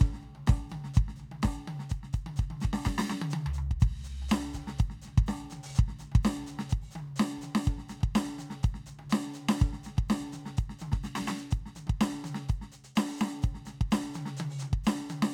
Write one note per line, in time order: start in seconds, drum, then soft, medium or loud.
0.01 kick loud
0.13 snare soft
0.20 hi-hat pedal soft
0.20 high tom medium
0.35 high tom medium
0.47 kick loud
0.47 snare medium
0.47 hi-hat pedal medium
0.60 high tom medium
0.69 hi-hat pedal soft
0.69 high tom medium
0.84 snare soft
0.94 kick loud
0.94 hi-hat pedal medium
0.94 high tom medium
1.08 snare soft
1.16 hi-hat pedal medium
1.16 high tom medium
1.31 high tom medium
1.42 kick medium
1.42 snare loud
1.42 hi-hat pedal medium
1.55 high tom medium
1.63 hi-hat pedal soft
1.68 high tom medium
1.79 snare soft
1.89 kick soft
1.89 hi-hat pedal medium
1.89 high tom medium
2.03 snare soft
2.13 kick medium
2.13 hi-hat pedal loud
2.13 high tom medium
2.26 high tom medium
2.36 kick medium
2.36 hi-hat pedal loud
2.41 snare soft
2.50 high tom medium
2.60 snare medium
2.60 hi-hat pedal medium
2.65 kick medium
2.73 snare loud
2.83 kick medium
2.83 snare loud
2.83 hi-hat pedal medium
2.98 snare loud
3.06 snare loud
3.06 hi-hat pedal loud
3.21 high tom loud
3.30 hi-hat pedal loud
3.30 high tom loud
3.46 floor tom loud
3.53 hi-hat pedal medium
3.58 floor tom medium
3.71 kick medium
3.80 kick loud
3.80 hi-hat pedal loud
3.80 crash medium
3.84 crash medium
4.04 hi-hat pedal medium
4.22 high tom soft
4.28 snare loud
4.28 hi-hat pedal medium
4.37 snare soft
4.43 high tom medium
4.53 kick soft
4.53 hi-hat pedal medium
4.53 high tom medium
4.67 snare medium
4.79 kick loud
4.79 hi-hat pedal loud
4.79 high tom medium
4.90 snare soft
5.02 snare soft
5.02 hi-hat pedal medium
5.08 high tom medium
5.18 kick loud
5.18 high tom medium
5.26 snare loud
5.26 hi-hat pedal loud
5.40 high tom medium
5.50 hi-hat pedal medium
5.50 high tom medium
5.63 open hi-hat medium
5.75 kick loud
5.75 hi-hat pedal loud
5.75 high tom medium
5.88 snare soft
5.99 snare soft
5.99 hi-hat pedal medium
5.99 high tom medium
6.09 kick soft
6.09 high tom medium
6.15 kick loud
6.23 snare loud
6.23 hi-hat pedal loud
6.36 high tom medium
6.46 hi-hat pedal medium
6.46 high tom medium
6.59 snare medium
6.69 kick medium
6.69 hi-hat pedal medium
6.69 high tom medium
6.82 open hi-hat medium
6.91 hi-hat pedal medium
6.95 high tom medium
7.16 snare loud
7.16 hi-hat pedal medium
7.31 high tom medium
7.37 kick soft
7.37 hi-hat pedal medium
7.43 high tom medium
7.55 snare loud
7.64 kick medium
7.64 hi-hat pedal medium
7.64 high tom medium
7.78 snare soft
7.89 snare medium
7.89 hi-hat pedal medium
7.89 high tom soft
8.01 kick medium
8.01 high tom medium
8.15 snare loud
8.15 hi-hat pedal loud
8.26 high tom medium
8.38 hi-hat pedal loud
8.38 high tom medium
8.50 snare soft
8.63 kick loud
8.63 hi-hat pedal loud
8.63 high tom medium
8.74 snare soft
8.86 hi-hat pedal medium
8.86 high tom medium
8.99 high tom medium
9.05 kick soft
9.10 snare loud
9.10 hi-hat pedal loud
9.23 high tom medium
9.34 hi-hat pedal medium
9.34 high tom medium
9.49 snare loud
9.58 kick loud
9.58 hi-hat pedal loud
9.58 high tom medium
9.73 snare soft
9.83 snare soft
9.83 hi-hat pedal medium
9.83 high tom medium
9.97 kick medium
9.97 high tom medium
10.09 snare loud
10.09 hi-hat pedal medium
10.21 high tom medium
10.32 hi-hat pedal medium
10.32 high tom medium
10.46 snare soft
10.57 kick medium
10.57 hi-hat pedal medium
10.57 high tom medium
10.70 snare medium
10.79 hi-hat pedal medium
10.79 high tom medium
10.92 kick medium
10.92 snare medium
11.03 snare medium
11.03 hi-hat pedal medium
11.15 snare loud
11.21 kick soft
11.26 snare loud
11.26 hi-hat pedal medium
11.38 open hi-hat medium
11.51 kick medium
11.51 hi-hat pedal medium
11.66 snare soft
11.75 hi-hat pedal medium
11.75 high tom medium
11.87 kick medium
11.87 high tom medium
12.01 snare loud
12.01 hi-hat pedal medium
12.12 high tom medium
12.24 hi-hat pedal medium
12.24 high tom medium
12.35 snare medium
12.49 kick medium
12.49 hi-hat pedal medium
12.49 high tom soft
12.61 snare soft
12.72 hi-hat pedal medium
12.84 open hi-hat medium
12.96 snare loud
12.96 hi-hat pedal loud
13.08 open hi-hat loud
13.18 snare loud
13.18 hi-hat pedal medium
13.26 snare medium
13.33 high tom medium
13.42 kick medium
13.42 hi-hat pedal medium
13.42 high tom medium
13.54 snare soft
13.65 snare soft
13.65 hi-hat pedal medium
13.70 high tom soft
13.81 kick medium
13.81 high tom medium
13.91 snare loud
13.91 hi-hat pedal medium
14.04 high tom medium
14.14 hi-hat pedal medium
14.14 high tom medium
14.26 snare medium
14.37 hi-hat pedal medium
14.37 high tom medium
14.50 open hi-hat medium
14.59 hi-hat pedal medium
14.59 high tom medium
14.73 kick medium
14.84 snare loud
14.84 hi-hat pedal medium
14.89 high tom medium
15.09 hi-hat pedal medium
15.09 high tom medium
15.22 snare loud